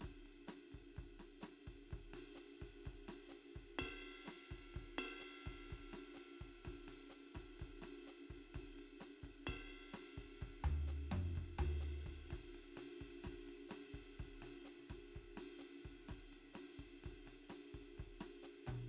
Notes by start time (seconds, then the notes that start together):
0.01 kick, cross-stick, ride
0.09 kick
0.26 ride
0.47 cross-stick, snare, hi-hat pedal, ride
0.72 kick, ride
0.97 kick, ride
1.03 kick
1.19 cross-stick, ride
1.41 cross-stick, hi-hat pedal, ride
1.67 kick, ride
1.91 kick, ride
1.98 kick
2.14 snare, ride
2.35 hi-hat pedal, ride
2.62 kick, ride
2.86 kick, ride
2.92 kick
3.08 cross-stick, ride
3.29 hi-hat pedal, ride
3.56 kick, ride
3.79 kick, ride bell
3.87 kick
4.03 ride
4.26 cross-stick, hi-hat pedal, ride
4.51 kick, ride
4.57 kick
4.74 kick, ride
4.82 kick
4.98 ride bell
5.20 hi-hat pedal, ride
5.46 kick, ride
5.52 kick
5.70 kick, ride
5.77 kick
5.93 cross-stick, ride
6.14 hi-hat pedal, ride
6.41 kick, ride
6.65 kick, cross-stick, ride
6.72 kick
6.88 snare, ride
7.10 hi-hat pedal, ride
7.35 kick, cross-stick, snare, ride
7.41 kick
7.60 kick, ride
7.67 kick
7.82 cross-stick, ride
8.07 hi-hat pedal, ride
8.30 kick, ride
8.54 kick, snare, ride
8.61 kick
8.79 ride
9.00 cross-stick, hi-hat pedal, ride
9.23 kick, ride
9.47 kick, ride bell
9.54 kick
9.70 ride
9.93 cross-stick, hi-hat pedal, ride
10.17 kick, ride
10.41 kick, ride
10.48 kick
10.64 floor tom, ride
10.88 hi-hat pedal, ride
11.12 kick, mid tom, ride
11.18 kick
11.36 kick, ride
11.43 kick
11.59 floor tom, ride
11.80 hi-hat pedal, ride
12.06 kick, ride
12.12 kick
12.31 kick, snare, ride
12.38 kick
12.55 ride
12.76 snare, hi-hat pedal, ride
13.01 kick, ride
13.24 kick, cross-stick, snare, ride
13.31 kick
13.49 ride
13.69 cross-stick, snare, hi-hat pedal, ride
13.94 kick, ride
14.19 kick, ride
14.25 kick
14.42 snare, ride
14.65 hi-hat pedal, ride
14.79 snare
14.90 kick, cross-stick, snare, ride
15.15 kick, ride
15.21 kick
15.37 cross-stick, snare, ride
15.59 hi-hat pedal, ride
15.85 kick, ride
16.08 kick, cross-stick, snare, ride
16.16 kick
16.33 ride
16.54 cross-stick, snare, hi-hat pedal, ride
16.79 kick, ride
17.04 kick, cross-stick, ride
17.11 kick
17.26 snare, ride
17.49 cross-stick, hi-hat pedal, ride
17.74 kick, ride
17.98 kick, ride
18.05 kick
18.21 cross-stick, ride
18.43 hi-hat pedal, ride
18.67 kick, high tom, ride
18.74 kick